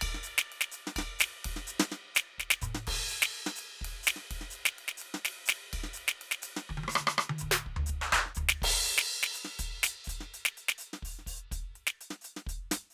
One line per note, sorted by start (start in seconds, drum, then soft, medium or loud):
0.01 kick soft
0.01 ride bell loud
0.11 kick soft
0.11 snare soft
0.23 hi-hat pedal medium
0.27 ride medium
0.38 snare loud
0.52 ride medium
0.61 snare medium
0.72 hi-hat pedal medium
0.72 ride medium
0.87 snare medium
0.96 kick soft
0.96 snare medium
0.96 ride bell loud
1.19 snare loud
1.19 hi-hat pedal medium
1.19 ride loud
1.45 kick soft
1.45 ride loud
1.56 snare soft
1.67 hi-hat pedal medium
1.71 snare soft
1.80 snare loud
1.88 snare medium
1.88 hi-hat pedal soft
2.15 snare loud
2.15 hi-hat pedal medium
2.38 kick soft
2.38 snare medium
2.50 snare loud
2.62 kick soft
2.62 hi-hat pedal medium
2.62 mid tom medium
2.75 snare medium
2.87 kick soft
2.87 crash medium
2.91 kick soft
2.91 snare soft
2.96 snare soft
3.08 hi-hat pedal medium
3.08 ride bell medium
3.22 snare loud
3.35 ride soft
3.46 snare medium
3.56 hi-hat pedal medium
3.56 ride medium
3.81 kick soft
3.81 ride medium
4.03 snare loud
4.03 hi-hat pedal medium
4.07 ride loud
4.16 snare soft
4.31 kick soft
4.31 ride medium
4.41 snare soft
4.50 hi-hat pedal medium
4.55 ride soft
4.65 snare loud
4.78 ride medium
4.88 snare medium
4.97 hi-hat pedal medium
5.02 ride medium
5.14 snare medium
5.25 snare medium
5.25 ride loud
5.46 snare loud
5.46 hi-hat pedal medium
5.46 ride medium
5.73 kick soft
5.73 ride bell medium
5.79 kick soft
5.83 snare soft
5.93 hi-hat pedal medium
5.98 ride medium
6.08 snare loud
6.21 ride medium
6.31 snare medium
6.42 hi-hat pedal medium
6.42 ride medium
6.57 snare medium
6.69 kick soft
6.69 high tom medium
6.77 high tom medium
6.83 high tom medium
6.88 cross-stick medium
6.88 hi-hat pedal medium
6.95 cross-stick loud
7.00 high tom soft
7.07 cross-stick loud
7.18 cross-stick loud
7.29 high tom loud
7.38 hi-hat pedal medium
7.38 mid tom medium
7.43 kick soft
7.51 snare loud
7.66 kick soft
7.76 floor tom loud
7.86 kick soft
7.86 hi-hat pedal medium
8.01 percussion medium
8.12 kick soft
8.12 percussion loud
8.26 snare soft
8.35 kick soft
8.35 floor tom medium
8.35 hi-hat pedal medium
8.42 kick soft
8.49 snare loud
8.62 kick medium
8.62 crash loud
8.69 kick soft
8.69 snare soft
8.85 closed hi-hat soft
8.85 hi-hat pedal medium
8.98 snare loud
9.11 closed hi-hat soft
9.23 snare medium
9.34 closed hi-hat medium
9.34 hi-hat pedal medium
9.45 snare soft
9.59 closed hi-hat medium
9.59 kick soft
9.83 closed hi-hat loud
9.83 snare loud
10.04 kick soft
10.04 hi-hat pedal medium
10.09 closed hi-hat medium
10.21 snare soft
10.34 closed hi-hat medium
10.45 snare loud
10.57 closed hi-hat soft
10.69 snare medium
10.78 closed hi-hat soft
10.78 hi-hat pedal medium
10.93 snare soft
11.03 open hi-hat medium
11.03 kick soft
11.19 snare soft
11.27 open hi-hat medium
11.27 kick soft
11.52 closed hi-hat medium
11.52 kick soft
11.60 kick soft
11.75 closed hi-hat soft
11.87 snare medium
12.01 closed hi-hat soft
12.10 snare medium
12.21 closed hi-hat soft
12.21 hi-hat pedal soft
12.37 snare soft
12.47 closed hi-hat medium
12.47 kick soft
12.71 closed hi-hat medium
12.71 snare medium
12.90 hi-hat pedal soft